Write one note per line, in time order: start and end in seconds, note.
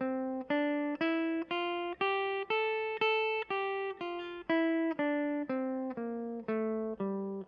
0.01 0.44 C4
0.50 0.98 D4
1.01 1.45 E4
1.51 1.95 F4
2.01 2.46 G4
2.50 3.00 A4
3.02 3.45 A4
3.51 3.94 G4
4.01 4.44 F4
4.49 4.96 E4
4.99 5.47 D4
5.50 5.95 C4
5.98 6.44 A#3
6.49 6.96 A3
7.01 7.45 G3